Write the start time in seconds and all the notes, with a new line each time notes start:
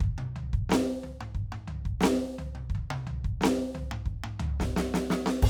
0.01 kick, floor tom
0.18 high tom
0.36 floor tom
0.54 kick
0.70 snare
0.72 snare
1.04 floor tom
1.21 mid tom
1.35 kick
1.47 kick
1.53 mid tom
1.68 floor tom
1.86 kick
2.01 snare
2.04 snare
2.39 floor tom
2.56 high tom
2.70 kick
2.75 floor tom
2.91 high tom
3.07 floor tom
3.25 kick
3.41 snare
3.44 snare
3.75 floor tom
3.92 mid tom
4.06 kick
4.24 mid tom
4.40 floor tom
4.60 kick, snare
4.75 kick, snare
4.94 snare
5.11 snare
5.27 snare
5.43 kick, crash